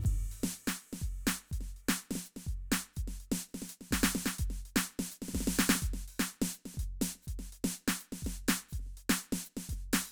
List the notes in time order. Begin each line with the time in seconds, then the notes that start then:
0.01 kick, hi-hat pedal, floor tom
0.06 crash
0.12 kick
0.16 kick
0.31 open hi-hat
0.43 snare, hi-hat pedal
0.56 closed hi-hat
0.67 snare
0.74 hi-hat pedal
0.80 closed hi-hat
0.93 snare
1.02 kick, closed hi-hat
1.10 kick
1.27 closed hi-hat, snare
1.47 hi-hat pedal
1.51 closed hi-hat, kick
1.60 snare
1.76 closed hi-hat
1.88 snare
2.02 closed hi-hat
2.11 snare
2.15 snare
2.23 hi-hat pedal
2.36 snare
2.46 kick, closed hi-hat
2.52 kick
2.72 closed hi-hat, snare
2.93 closed hi-hat, hi-hat pedal
2.97 kick
3.05 kick, snare
3.20 closed hi-hat
3.31 snare
3.42 closed hi-hat
3.49 closed hi-hat
3.54 snare
3.62 snare
3.67 closed hi-hat, hi-hat pedal
3.81 snare
3.91 kick, snare
4.03 snare
4.15 snare
4.26 snare
4.33 hi-hat pedal
4.38 closed hi-hat, kick
4.45 kick
4.49 kick, snare
4.65 closed hi-hat
4.76 snare
4.89 closed hi-hat
4.99 snare
5.10 closed hi-hat, hi-hat pedal
5.22 snare
5.28 snare
5.34 kick, snare
5.40 snare
5.47 snare
5.53 hi-hat pedal
5.59 snare
5.69 snare
5.75 snare, hi-hat pedal
5.82 closed hi-hat, kick
5.88 kick
5.92 kick, snare
6.08 open hi-hat
6.19 snare, hi-hat pedal
6.32 closed hi-hat
6.42 snare
6.52 closed hi-hat, hi-hat pedal
6.65 snare
6.74 kick, snare
6.79 closed hi-hat, kick
7.01 open hi-hat, snare
7.15 snare
7.22 hi-hat pedal
7.27 closed hi-hat, kick
7.39 snare
7.52 closed hi-hat
7.64 snare
7.77 closed hi-hat
7.88 snare
7.98 closed hi-hat, hi-hat pedal
8.12 snare
8.22 closed hi-hat, kick, snare
8.48 closed hi-hat, snare
8.68 hi-hat pedal
8.72 closed hi-hat, kick
8.79 snare
8.86 snare
8.97 closed hi-hat
9.09 snare
9.21 closed hi-hat
9.32 snare
9.43 hi-hat pedal
9.57 snare
9.69 closed hi-hat, kick, snare
9.93 open hi-hat, snare